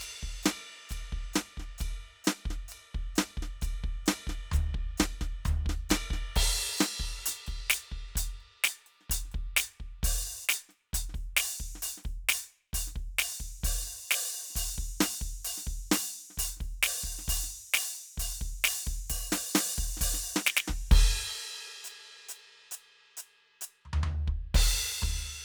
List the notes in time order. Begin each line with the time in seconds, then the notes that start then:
0.01 hi-hat pedal, ride bell
0.23 kick
0.44 snare, hi-hat pedal, ride bell
0.90 kick, snare, hi-hat pedal, ride bell
1.13 kick
1.34 snare, hi-hat pedal, ride bell
1.58 kick, snare
1.79 kick, hi-hat pedal, ride bell
2.25 snare, hi-hat pedal, ride bell
2.46 kick
2.51 snare
2.69 hi-hat pedal, ride bell
2.95 kick
3.16 snare, hi-hat pedal, ride bell
3.38 kick
3.43 snare
3.62 kick, hi-hat pedal, ride bell
3.84 kick
4.07 snare, hi-hat pedal, ride bell
4.28 kick, snare
4.52 kick, floor tom, hi-hat pedal
4.75 kick
4.98 kick, snare, hi-hat pedal, ride bell
5.22 kick, snare
5.46 kick, floor tom, hi-hat pedal
5.67 kick, snare
5.90 kick, snare, hi-hat pedal, ride bell
6.11 kick, snare
6.36 kick, crash
6.78 snare, hi-hat pedal
6.82 closed hi-hat
7.00 kick
7.26 closed hi-hat, snare
7.47 kick, closed hi-hat
7.71 closed hi-hat, snare
7.92 kick
8.16 closed hi-hat, kick, snare
8.41 closed hi-hat
8.64 closed hi-hat, snare
8.87 closed hi-hat
9.01 snare
9.10 closed hi-hat, kick
9.26 snare
9.32 kick, closed hi-hat
9.57 closed hi-hat, snare
9.81 kick
10.04 open hi-hat, kick
10.45 hi-hat pedal
10.50 closed hi-hat, snare
10.70 snare, closed hi-hat
10.94 closed hi-hat, kick
11.10 snare
11.15 kick, open hi-hat
11.37 open hi-hat, snare
11.60 kick, open hi-hat
11.76 snare
11.83 open hi-hat
11.98 snare
12.05 kick, open hi-hat
12.29 open hi-hat, snare
12.74 open hi-hat, kick
12.88 snare
12.96 kick, open hi-hat
13.19 open hi-hat, snare
13.41 kick, open hi-hat
13.62 open hi-hat, kick, snare
13.83 snare, open hi-hat
14.12 open hi-hat, snare
14.33 open hi-hat
14.51 snare
14.56 open hi-hat, kick
14.79 kick, open hi-hat
15.01 open hi-hat, snare
15.22 kick, open hi-hat
15.45 open hi-hat
15.58 snare
15.68 kick, open hi-hat
15.92 open hi-hat, snare
16.31 snare
16.38 open hi-hat, kick
16.58 kick, snare, open hi-hat
16.83 open hi-hat, snare
17.04 kick, open hi-hat
17.19 snare
17.29 open hi-hat, kick
17.44 snare
17.51 open hi-hat
17.75 open hi-hat, snare
17.96 open hi-hat
18.18 open hi-hat, kick
18.42 kick, open hi-hat
18.65 open hi-hat, snare
18.87 kick, open hi-hat
19.10 kick, open hi-hat
19.33 open hi-hat, snare
19.56 open hi-hat, snare
19.79 kick, open hi-hat
19.98 snare
20.02 open hi-hat, kick
20.15 snare
20.24 open hi-hat
20.37 snare
20.47 snare
20.57 snare
20.68 kick, snare
20.92 kick, crash
21.85 hi-hat pedal
22.29 hi-hat pedal
22.72 hi-hat pedal
23.18 hi-hat pedal
23.62 hi-hat pedal
23.86 floor tom
23.94 floor tom
24.28 kick, floor tom
24.55 kick, crash
24.74 floor tom
25.03 kick, floor tom